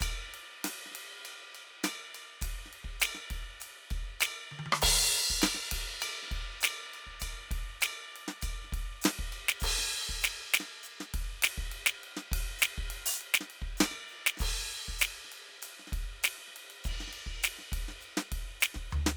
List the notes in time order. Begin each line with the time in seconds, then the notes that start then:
0.01 kick, hi-hat pedal, ride bell
0.08 kick
0.12 kick
0.28 snare
0.34 ride
0.64 snare, hi-hat pedal, ride
0.86 snare
0.92 snare, ride
1.20 snare
1.22 snare, ride bell
1.55 ride bell
1.84 snare, hi-hat pedal, ride bell
2.15 ride bell
2.41 kick, hi-hat pedal, ride
2.66 snare
2.73 ride
2.85 kick
3.00 snare, hi-hat pedal, ride bell
3.15 snare
3.30 kick, ride
3.37 kick
3.60 hi-hat pedal, ride
3.91 kick, ride bell
3.98 kick
4.20 snare, hi-hat pedal, ride bell
4.51 high tom
4.59 high tom
4.66 high tom
4.72 cross-stick
4.81 kick, hi-hat pedal, crash
5.30 kick
5.42 snare, hi-hat pedal, ride bell
5.55 snare
5.71 kick, ride
5.78 kick
6.01 hi-hat pedal, ride bell
6.23 snare
6.28 kick, snare, ride
6.38 kick
6.61 snare, hi-hat pedal, ride bell
6.94 ride bell
7.07 kick
7.18 snare, hi-hat pedal
7.22 kick, ride bell
7.33 kick
7.48 snare
7.51 kick, snare, ride
7.57 kick
7.81 snare, hi-hat pedal, ride bell
8.16 ride
8.28 snare
8.42 kick, hi-hat pedal, ride bell
8.50 kick
8.64 snare
8.73 kick, ride
8.80 kick
9.02 snare, hi-hat pedal, ride
9.19 kick
9.32 ride bell
9.49 snare
9.60 kick, hi-hat pedal, crash
9.69 kick
9.73 kick
9.78 snare
9.85 snare
9.90 snare
10.09 kick
10.22 snare, hi-hat pedal, ride bell
10.54 snare, ride bell
10.60 snare
10.83 hi-hat pedal, ride
11.00 snare
11.14 kick, ride
11.21 kick
11.43 snare, hi-hat pedal, ride
11.58 kick
11.64 kick
11.72 ride
11.86 snare
12.04 ride
12.17 snare
12.32 kick, ride
12.39 kick
12.43 kick
12.59 snare, hi-hat pedal, ride
12.78 kick
12.90 ride
13.06 open hi-hat
13.21 ride
13.34 snare
13.41 snare
13.50 ride
13.62 kick
13.77 snare, hi-hat pedal, ride bell
13.91 snare
14.08 hi-hat pedal
14.12 ride
14.27 snare
14.37 kick, snare, hi-hat pedal, crash
14.47 kick
14.52 kick
14.88 kick
14.99 snare, hi-hat pedal, ride
15.25 snare
15.32 ride
15.49 snare
15.62 hi-hat pedal, ride
15.79 snare
15.87 snare
15.93 kick, ride
16.01 kick
16.23 snare, hi-hat pedal, ride
16.38 snare
16.48 snare
16.56 ride
16.70 ride
16.84 kick, hi-hat pedal, ride
16.92 kick
17.00 snare
17.08 snare
17.13 ride
17.27 kick
17.43 snare, hi-hat pedal, ride
17.59 snare
17.72 kick, ride
17.78 kick
17.88 snare
18.01 hi-hat pedal, ride
18.17 snare
18.32 kick, ride
18.38 kick
18.61 snare, hi-hat pedal, ride
18.74 kick, snare
18.91 floor tom, hi-hat pedal
19.06 snare